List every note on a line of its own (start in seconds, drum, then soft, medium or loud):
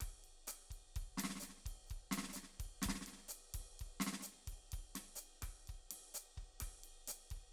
0.01 kick soft
0.01 cross-stick soft
0.01 ride medium
0.08 kick soft
0.25 ride soft
0.48 cross-stick soft
0.48 snare soft
0.48 hi-hat pedal medium
0.48 ride medium
0.71 kick soft
0.71 ride soft
0.96 kick soft
0.96 ride soft
1.02 kick soft
1.18 snare medium
1.18 ride medium
1.24 snare medium
1.30 snare soft
1.36 snare soft
1.41 snare soft
1.41 hi-hat pedal medium
1.41 ride soft
1.50 snare soft
1.57 snare soft
1.63 kick soft
1.63 snare soft
1.63 ride soft
1.68 kick soft
1.68 snare soft
1.72 snare soft
1.75 snare soft
1.78 snare soft
1.87 hi-hat pedal soft
1.87 ride soft
1.91 kick soft
1.96 kick soft
2.12 snare medium
2.12 ride medium
2.18 snare medium
2.24 snare soft
2.29 snare soft
2.34 snare soft
2.34 hi-hat pedal medium
2.34 ride soft
2.44 snare soft
2.49 snare soft
2.54 snare soft
2.57 kick soft
2.57 snare soft
2.57 ride soft
2.66 kick soft
2.82 kick soft
2.82 snare medium
2.82 ride medium
2.89 kick soft
2.89 snare medium
2.95 snare soft
3.02 snare soft
3.07 snare soft
3.07 ride soft
3.13 snare soft
3.18 snare soft
3.23 snare soft
3.26 snare soft
3.26 hi-hat pedal medium
3.30 snare soft
3.30 ride medium
3.55 kick soft
3.55 ride medium
3.60 kick soft
3.60 snare soft
3.80 kick soft
3.80 ride soft
3.86 kick soft
4.01 snare medium
4.01 ride medium
4.07 snare medium
4.13 snare soft
4.20 snare soft
4.20 hi-hat pedal medium
4.24 snare soft
4.24 ride soft
4.32 snare soft
4.38 snare soft
4.42 snare soft
4.48 kick soft
4.48 ride soft
4.53 kick soft
4.73 kick soft
4.73 ride soft
4.79 kick soft
4.96 snare soft
4.96 ride medium
5.16 hi-hat pedal medium
5.16 ride soft
5.42 kick soft
5.42 cross-stick soft
5.42 snare soft
5.42 ride medium
5.49 kick soft
5.68 kick soft
5.68 ride soft
5.75 kick soft
5.91 snare soft
5.91 ride medium
6.15 hi-hat pedal medium
6.38 kick soft
6.43 kick soft
6.61 kick soft
6.61 cross-stick soft
6.61 snare soft
6.61 hi-hat pedal soft
6.61 ride medium
6.68 kick soft
6.84 ride soft
7.08 snare soft
7.08 hi-hat pedal medium
7.08 ride medium
7.31 kick soft
7.31 ride soft
7.37 kick soft